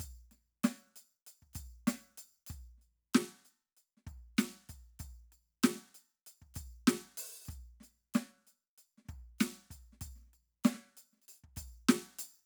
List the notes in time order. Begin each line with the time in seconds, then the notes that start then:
0.01 kick, percussion
0.32 snare, percussion
0.65 snare, percussion
0.97 percussion
1.28 percussion
1.43 kick
1.55 percussion
1.56 kick, percussion
1.88 snare, percussion
2.19 percussion
2.48 kick, percussion
2.52 percussion
2.79 snare, percussion
3.15 snare, percussion
3.46 percussion
3.78 percussion
3.98 snare
4.08 kick, percussion
4.38 snare, percussion
4.70 kick, percussion
5.01 kick, percussion
5.33 percussion
5.64 snare, percussion
5.76 snare
5.96 percussion
6.28 percussion
6.43 kick
6.55 kick, percussion
6.89 snare, percussion
7.19 percussion
7.47 kick, percussion
7.51 percussion
7.82 snare, percussion
8.15 snare, percussion
8.48 percussion
8.79 percussion
8.99 snare
9.06 kick, snare, percussion
9.40 percussion
9.41 snare, percussion
9.72 kick, percussion
9.94 snare
10.02 kick, percussion
10.08 kick
10.17 snare
10.19 snare
10.22 snare
10.28 snare
10.35 percussion
10.65 snare, percussion
10.75 snare
10.98 percussion
11.14 snare
11.18 snare
11.23 percussion
11.29 percussion
11.45 kick
11.58 kick, percussion
11.90 snare, percussion
12.20 percussion